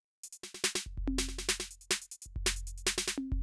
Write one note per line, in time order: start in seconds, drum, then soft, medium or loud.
0.24 closed hi-hat loud
0.33 closed hi-hat loud
0.43 snare medium
0.54 snare medium
0.64 snare loud
0.75 snare loud
0.86 kick soft
0.98 kick soft
1.08 high tom loud
1.18 snare loud
1.39 snare medium
1.49 snare loud
1.60 snare medium
1.71 closed hi-hat loud
1.81 closed hi-hat medium
1.91 snare loud
2.02 closed hi-hat loud
2.11 closed hi-hat loud
2.22 kick soft
2.22 closed hi-hat loud
2.46 snare loud
2.56 closed hi-hat loud
2.67 closed hi-hat loud
2.78 closed hi-hat medium
2.87 snare loud
2.98 snare loud
3.08 snare loud
3.18 high tom loud
3.32 kick medium